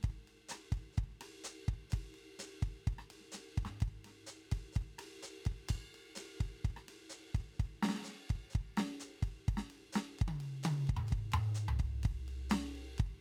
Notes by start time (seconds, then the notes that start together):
0.01 kick, snare, ride
0.10 kick
0.28 ride
0.49 cross-stick, snare, hi-hat pedal, ride
0.72 kick, ride
0.78 kick
0.93 hi-hat pedal
0.98 kick, ride
1.04 kick
1.10 snare
1.21 cross-stick, ride
1.44 hi-hat pedal, ride
1.69 kick, ride
1.74 kick
1.90 kick, snare, hi-hat pedal, ride
2.15 ride
2.39 snare, hi-hat pedal, ride
2.63 kick, ride
2.68 kick
2.88 kick, ride
2.93 kick
2.99 cross-stick, snare
3.11 ride
3.21 snare
3.32 snare, hi-hat pedal, ride
3.58 kick, ride
3.63 kick, snare, mid tom
3.81 kick, ride
3.88 kick
4.04 snare, ride
4.06 snare
4.27 hi-hat pedal, ride
4.52 kick, ride
4.58 kick
4.73 kick, hi-hat pedal, ride
4.82 kick
4.99 cross-stick, ride
5.23 hi-hat pedal, ride
5.46 kick, ride
5.52 kick
5.69 kick, hi-hat pedal, ride bell
5.76 kick
5.95 ride
6.16 snare, hi-hat pedal, ride
6.41 kick, ride
6.46 kick
6.65 kick, ride
6.70 kick
6.77 cross-stick, snare
6.89 ride
7.10 hi-hat pedal, ride
7.35 kick, ride
7.40 kick
7.54 hi-hat pedal
7.60 kick, ride
7.65 kick
7.83 snare, ride
7.89 snare
7.94 snare
7.98 snare
8.02 snare, hi-hat pedal
8.05 snare, ride
8.08 snare
8.12 snare
8.15 snare
8.30 kick, ride
8.36 kick
8.51 hi-hat pedal, ride
8.55 kick
8.61 kick
8.78 snare, ride
9.00 hi-hat pedal, ride
9.09 snare
9.23 kick, snare, ride
9.28 kick, snare
9.49 kick, ride
9.55 kick, snare
9.71 ride
9.93 snare, hi-hat pedal, ride
10.19 kick, ride
10.28 kick, high tom
10.41 ride
10.64 hi-hat pedal, high tom, ride
10.88 kick, ride
10.95 kick, mid tom
11.07 hi-hat pedal, ride
11.13 kick
11.19 kick
11.33 mid tom, ride
11.55 hi-hat pedal, ride
11.69 floor tom
11.80 kick, ride
11.86 kick
12.04 kick, ride
12.12 kick
12.29 ride
12.50 snare, hi-hat pedal, ride
12.76 ride
12.81 snare
12.86 snare
12.99 kick, ride
13.06 kick